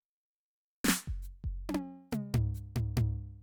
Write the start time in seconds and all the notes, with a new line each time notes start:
0.84 snare
0.88 snare
1.07 kick
1.22 hi-hat pedal
1.44 kick
1.69 high tom
1.74 high tom
2.11 hi-hat pedal, mid tom
2.34 floor tom
2.54 hi-hat pedal
2.76 floor tom
2.97 floor tom